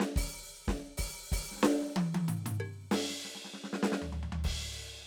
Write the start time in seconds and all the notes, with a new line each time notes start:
0.00 snare
0.16 open hi-hat, kick
0.68 kick, snare
0.97 open hi-hat, kick
1.32 open hi-hat, kick
1.51 snare
1.56 snare
1.60 snare
1.63 snare
1.81 snare
1.86 snare
1.90 snare
1.96 high tom
2.14 high tom
2.28 mid tom
2.46 mid tom
2.60 percussion
2.91 snare, ride
3.10 snare
3.24 snare
3.35 snare
3.44 snare
3.53 snare
3.64 snare
3.73 snare
3.83 snare
3.92 snare
4.02 floor tom
4.12 floor tom
4.23 floor tom
4.32 floor tom
4.44 kick, ride